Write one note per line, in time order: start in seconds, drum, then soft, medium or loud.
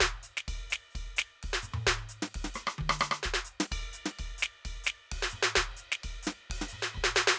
0.01 kick soft
0.01 snare loud
0.07 kick soft
0.23 hi-hat pedal medium
0.37 snare medium
0.48 kick soft
0.48 ride bell medium
0.71 snare medium
0.71 hi-hat pedal medium
0.91 hi-hat pedal soft
0.96 kick soft
0.96 ride bell medium
1.17 snare loud
1.17 hi-hat pedal medium
1.43 kick soft
1.43 ride medium
1.54 snare medium
1.63 hi-hat pedal medium
1.63 mid tom medium
1.74 mid tom loud
1.87 kick soft
1.87 snare loud
1.97 snare soft
2.09 hi-hat pedal medium
2.23 snare medium
2.35 kick soft
2.35 ride medium
2.45 snare medium
2.55 cross-stick medium
2.55 hi-hat pedal medium
2.67 cross-stick medium
2.79 kick soft
2.79 high tom medium
2.90 cross-stick loud
2.99 cross-stick loud
2.99 hi-hat pedal medium
3.12 cross-stick medium
3.23 kick soft
3.23 snare medium
3.34 snare medium
3.45 hi-hat pedal medium
3.60 snare loud
3.72 kick soft
3.72 ride bell loud
3.82 kick soft
3.94 hi-hat pedal medium
4.06 snare medium
4.19 kick soft
4.19 ride bell medium
4.39 hi-hat pedal medium
4.43 snare loud
4.65 kick soft
4.65 ride bell medium
4.84 snare loud
4.84 hi-hat pedal medium
5.12 kick soft
5.12 ride loud
5.23 snare medium
5.30 hi-hat pedal medium
5.30 mid tom medium
5.43 snare loud
5.56 kick soft
5.56 snare loud
5.77 hi-hat pedal medium
5.92 snare medium
6.04 kick soft
6.04 ride bell medium
6.23 hi-hat pedal medium
6.27 snare medium
6.50 kick soft
6.50 ride loud
6.62 snare medium
6.69 hi-hat pedal medium
6.73 mid tom soft
6.83 snare medium
6.95 kick soft
6.95 mid tom medium
7.04 snare loud
7.16 snare loud
7.16 hi-hat pedal medium
7.28 snare loud
7.35 snare soft